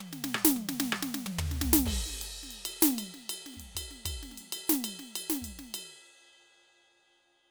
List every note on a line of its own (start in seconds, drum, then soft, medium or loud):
0.01 high tom medium
0.13 snare medium
0.25 snare medium
0.35 cross-stick loud
0.45 snare loud
0.57 high tom medium
0.69 snare medium
0.80 snare loud
0.93 cross-stick loud
1.03 snare medium
1.15 snare medium
1.27 hi-hat pedal soft
1.27 open hi-hat soft
1.27 high tom loud
1.39 floor tom loud
1.52 snare soft
1.56 hi-hat pedal soft
1.62 kick soft
1.62 snare medium
1.74 snare loud
1.82 hi-hat pedal medium
1.86 kick soft
1.86 crash medium
1.92 kick soft
2.06 snare soft
2.13 snare soft
2.17 snare soft
2.22 ride loud
2.44 snare soft
2.51 ride medium
2.66 ride bell loud
2.81 snare loud
2.81 hi-hat pedal loud
2.91 snare soft
2.99 ride bell loud
3.14 snare soft
3.30 hi-hat pedal medium
3.30 ride bell loud
3.47 snare soft
3.54 kick soft
3.54 snare soft
3.60 ride medium
3.75 kick soft
3.75 hi-hat pedal soft
3.75 ride bell loud
3.91 snare soft
4.06 kick soft
4.06 ride bell loud
4.23 snare soft
4.32 snare soft
4.38 snare soft
4.38 ride bell medium
4.53 ride bell loud
4.68 snare loud
4.68 hi-hat pedal medium
4.85 ride bell loud
5.00 snare soft
5.16 hi-hat pedal medium
5.16 ride bell loud
5.30 snare medium
5.37 snare soft
5.42 kick soft
5.42 ride bell medium
5.59 snare soft
5.75 ride bell loud